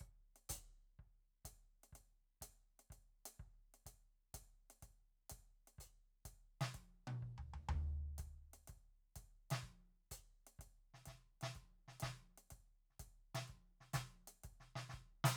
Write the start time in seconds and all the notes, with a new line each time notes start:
0.01 kick
0.36 closed hi-hat
0.49 open hi-hat, kick
0.99 kick
1.45 kick, closed hi-hat
1.84 closed hi-hat
1.93 kick, closed hi-hat
2.42 kick, closed hi-hat
2.79 closed hi-hat
2.90 kick, closed hi-hat
3.26 open hi-hat
3.40 kick
3.74 closed hi-hat
3.86 kick, closed hi-hat
4.34 kick, closed hi-hat
4.70 closed hi-hat
4.83 kick, closed hi-hat
5.30 kick, closed hi-hat
5.68 closed hi-hat
5.79 closed hi-hat, kick
6.25 kick, closed hi-hat
6.61 snare, closed hi-hat
6.75 kick, closed hi-hat
7.07 high tom
7.23 kick
7.38 floor tom
7.54 floor tom
7.69 kick, floor tom
8.18 kick, closed hi-hat
8.54 closed hi-hat
8.68 kick, closed hi-hat
9.16 kick, closed hi-hat
9.51 snare, closed hi-hat
9.63 kick
10.12 closed hi-hat, kick
10.47 closed hi-hat
10.59 kick, closed hi-hat
10.94 snare
11.06 kick, snare, closed hi-hat
11.41 snare, closed hi-hat
11.55 kick, closed hi-hat
11.88 snare
12.00 kick, snare, closed hi-hat
12.38 closed hi-hat
12.51 kick, closed hi-hat
12.90 snare
13.00 kick, closed hi-hat
13.35 snare, closed hi-hat
13.48 kick, closed hi-hat
13.81 snare
13.94 closed hi-hat, kick, snare
14.28 closed hi-hat
14.44 kick, closed hi-hat
14.60 snare
14.76 snare
14.89 snare
14.94 kick
15.24 open hi-hat, snare